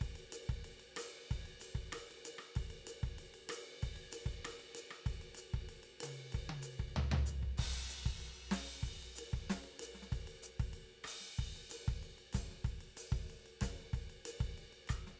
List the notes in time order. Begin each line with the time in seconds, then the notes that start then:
0.01 kick, ride
0.16 ride
0.32 hi-hat pedal, ride
0.49 kick
0.65 ride
0.80 ride
0.96 cross-stick, hi-hat pedal, ride
1.31 kick, ride
1.46 ride
1.60 hi-hat pedal, ride
1.75 kick
1.92 cross-stick, ride
2.11 ride
2.25 hi-hat pedal, ride
2.38 cross-stick
2.56 kick, ride
2.70 ride
2.87 hi-hat pedal, ride
3.03 kick
3.19 ride
3.34 ride
3.49 cross-stick, hi-hat pedal, ride
3.83 kick, ride
3.96 ride
4.12 hi-hat pedal, ride
4.26 kick
4.45 cross-stick, ride
4.60 ride
4.75 hi-hat pedal, ride
4.91 cross-stick
5.06 kick, ride
5.21 ride
5.35 hi-hat pedal, ride
5.54 kick
5.69 ride
5.83 ride
6.01 hi-hat pedal, high tom, ride
6.32 kick, ride
6.49 high tom
6.62 hi-hat pedal, ride
6.79 kick
6.96 floor tom
7.12 floor tom
7.26 hi-hat pedal, ride
7.43 kick
7.58 kick, crash, ride
7.89 hi-hat pedal, ride
8.06 kick
8.20 ride
8.51 snare, hi-hat pedal, ride
8.83 kick
8.88 ride
9.03 ride
9.16 hi-hat pedal, ride
9.33 kick
9.50 snare, ride
9.64 ride
9.80 hi-hat pedal, ride
9.94 snare
10.02 snare
10.07 snare
10.12 kick, ride
10.27 ride
10.43 hi-hat pedal
10.48 snare
10.60 kick, ride
10.73 ride
11.04 kick, cross-stick, hi-hat pedal, ride
11.21 snare
11.39 kick, ride
11.56 ride
11.69 hi-hat pedal, ride
11.88 kick, snare
12.03 ride
12.18 ride
12.33 kick, snare, hi-hat pedal, ride
12.51 snare
12.64 kick, ride
12.81 ride
12.97 hi-hat pedal, ride
13.12 kick, snare
13.30 ride
13.46 ride
13.61 kick, snare, hi-hat pedal, ride
13.80 snare
13.93 kick, ride
14.10 ride
14.26 hi-hat pedal, ride
14.40 kick, snare
14.58 ride
14.73 ride
14.88 kick, cross-stick, hi-hat pedal, ride
15.07 snare